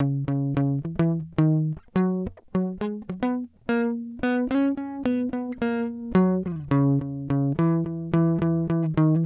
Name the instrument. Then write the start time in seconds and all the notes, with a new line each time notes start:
acoustic guitar
0.01 C#3
0.29 C#3
0.58 C#3
0.86 E3
1.00 E3
1.39 D#3
1.97 F#3
2.56 F#3
2.82 G#3
3.10 F#3
3.23 F#3 B3
3.70 A#3
4.24 B3
4.52 C#4
4.79 C#4
5.06 B3
5.34 B3
5.62 A#3
6.16 F#3
6.72 C#3
7.00 C#3
7.31 C#3
7.60 E3
7.87 E3
8.14 E3
8.43 E3
8.71 E3
8.98 D#3
9.16 E3